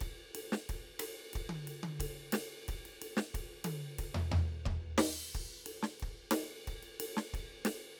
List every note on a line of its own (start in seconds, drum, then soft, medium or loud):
0.01 kick medium
0.01 ride medium
0.35 ride loud
0.52 snare medium
0.69 kick medium
0.69 ride medium
1.00 cross-stick medium
1.00 ride loud
1.33 kick medium
1.33 ride medium
1.49 high tom medium
1.67 ride medium
1.83 closed hi-hat soft
1.83 high tom medium
2.00 kick medium
2.00 ride loud
2.33 snare medium
2.33 ride loud
2.68 kick medium
2.68 ride medium
2.86 ride medium
3.02 ride medium
3.17 snare medium
3.34 kick medium
3.34 ride medium
3.65 high tom loud
3.65 ride loud
3.99 kick medium
3.99 ride medium
4.15 floor tom loud
4.32 floor tom loud
4.66 kick medium
4.66 floor tom medium
4.98 snare loud
4.98 crash loud
5.35 kick medium
5.35 ride medium
5.66 ride medium
5.83 snare medium
6.00 kick medium
6.00 ride soft
6.31 snare medium
6.31 ride loud
6.67 kick soft
6.67 ride medium
6.83 ride soft
7.00 ride loud
7.17 snare medium
7.34 kick medium
7.34 ride medium
7.65 snare medium
7.65 ride loud